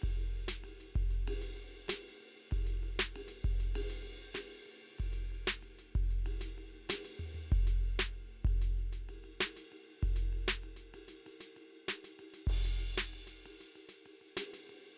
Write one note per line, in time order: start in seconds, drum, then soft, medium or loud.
0.01 kick medium
0.01 hi-hat pedal medium
0.01 ride medium
0.20 snare soft
0.33 ride soft
0.48 snare loud
0.61 hi-hat pedal medium
0.61 ride medium
0.80 snare soft
0.96 kick medium
0.96 ride soft
1.11 snare soft
1.27 hi-hat pedal medium
1.27 ride loud
1.42 snare soft
1.57 ride soft
1.73 ride soft
1.89 snare loud
1.89 hi-hat pedal medium
1.89 ride medium
2.08 snare soft
2.21 ride soft
2.36 ride soft
2.51 kick medium
2.51 hi-hat pedal medium
2.51 ride medium
2.66 snare soft
2.83 ride soft
2.99 snare loud
3.11 hi-hat pedal medium
3.16 ride medium
3.28 snare soft
3.44 kick medium
3.44 ride soft
3.60 snare soft
3.73 hi-hat pedal medium
3.73 ride loud
3.90 snare soft
4.03 ride soft
4.19 ride soft
4.35 snare medium
4.35 hi-hat pedal medium
4.35 ride medium
4.55 snare soft
4.66 ride soft
4.83 ride soft
4.99 kick soft
4.99 hi-hat pedal medium
4.99 ride medium
5.13 snare soft
5.32 ride soft
5.47 snare loud
5.60 hi-hat pedal medium
5.60 ride soft
5.79 snare soft
5.95 kick medium
5.95 ride soft
6.11 snare soft
6.24 hi-hat pedal medium
6.24 ride medium
6.41 snare medium
6.58 ride soft
6.74 ride soft
6.89 snare loud
6.89 hi-hat pedal medium
6.89 ride loud
7.05 snare soft
7.20 floor tom medium
7.35 floor tom soft
7.50 kick medium
7.50 hi-hat pedal medium
7.50 crash medium
7.67 snare soft
7.81 ride soft
7.99 snare loud
8.08 hi-hat pedal medium
8.45 kick medium
8.45 ride medium
8.62 snare soft
8.77 hi-hat pedal medium
8.77 ride soft
8.93 snare soft
9.09 ride medium
9.24 ride soft
9.40 snare loud
9.40 hi-hat pedal medium
9.40 ride medium
9.57 snare soft
9.72 ride soft
10.02 kick medium
10.02 hi-hat pedal medium
10.02 ride medium
10.16 snare soft
10.33 ride soft
10.48 snare loud
10.62 hi-hat pedal medium
10.62 ride soft
10.77 snare soft
10.94 ride medium
11.08 snare soft
11.27 hi-hat pedal medium
11.27 ride medium
11.41 snare soft
11.57 ride medium
11.88 snare loud
11.88 hi-hat pedal medium
11.88 ride medium
12.04 snare soft
12.19 hi-hat pedal medium
12.19 ride medium
12.34 snare soft
12.40 snare soft
12.47 kick medium
12.47 hi-hat pedal medium
12.47 ride medium
12.65 snare soft
12.79 hi-hat pedal medium
12.79 ride soft
12.98 snare loud
13.09 hi-hat pedal soft
13.14 ride soft
13.27 snare soft
13.44 hi-hat pedal medium
13.44 ride medium
13.61 snare soft
13.76 hi-hat pedal medium
13.76 ride soft
13.89 snare soft
14.04 hi-hat pedal medium
14.04 ride medium
14.21 ride soft
14.37 snare loud
14.37 hi-hat pedal medium
14.37 ride loud
14.54 snare soft
14.66 hi-hat pedal medium
14.66 ride soft